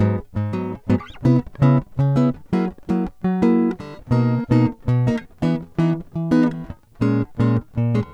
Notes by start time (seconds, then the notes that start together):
0.00 G#2 F#3 B3
0.16 D4
0.38 G#2
0.54 F#3 B3 D#4
0.91 G#2 F#3 B3
1.26 C3 B3 E4 G#4
1.56 G#4
1.63 C#3 B3 E4
2.00 C#3
2.17 B3 E4 G#4
2.54 F#3 A#3 E4 G#4
2.90 F#3 A#3 E4 G#4
3.26 F#3
3.43 A#3 E4 G#4
3.81 D3 G3
4.13 B2 A#3 D#4 F#4
4.52 B2 A#3 D#4 F#4
4.90 B2
5.08 A#3 D#4 F#4
5.43 E3 B3 D4 G#4
5.80 E3 B3 D#4 G#4
6.17 E3
6.32 B3 D#4 G#4
7.03 A#2 G#3 C#4 E4
7.41 A#2 G#3 C#4 D#4
7.79 A#2
7.96 G#3 C#4 D#4